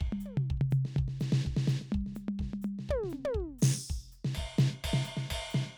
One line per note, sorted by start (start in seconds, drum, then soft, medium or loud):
0.01 kick medium
0.07 kick soft
0.12 kick soft
0.12 mid tom loud
0.21 hi-hat pedal medium
0.26 high tom soft
0.38 floor tom loud
0.51 kick soft
0.58 kick soft
0.58 floor tom loud
0.71 hi-hat pedal medium
0.71 floor tom loud
0.86 snare medium
0.97 kick soft
0.97 floor tom loud
1.08 snare soft
1.20 snare medium
1.20 hi-hat pedal medium
1.33 snare loud
1.45 kick soft
1.45 snare soft
1.53 kick soft
1.57 snare medium
1.68 snare loud
1.68 hi-hat pedal medium
1.82 snare soft
1.92 kick soft
1.92 mid tom loud
2.01 kick soft
2.07 snare soft
2.13 snare soft
2.13 hi-hat pedal medium
2.17 snare soft
2.17 mid tom medium
2.29 mid tom loud
2.39 kick soft
2.39 snare soft
2.45 kick soft
2.54 mid tom medium
2.62 hi-hat pedal medium
2.62 mid tom loud
2.79 snare soft
2.89 kick soft
2.89 high tom loud
3.04 snare soft
3.10 hi-hat pedal medium
3.10 high tom medium
3.20 snare soft
3.25 high tom loud
3.35 kick soft
3.40 kick soft
3.59 hi-hat pedal medium
3.59 crash loud
3.63 snare loud
3.90 kick soft
3.96 kick soft
4.12 hi-hat pedal medium
4.25 snare medium
4.35 kick soft
4.35 ride bell loud
4.44 kick soft
4.59 snare loud
4.59 hi-hat pedal medium
4.84 kick soft
4.84 ride loud
4.94 snare loud
5.05 hi-hat pedal medium
5.05 ride medium
5.17 snare medium
5.31 kick soft
5.31 ride bell loud
5.50 hi-hat pedal medium
5.55 snare medium
5.62 snare soft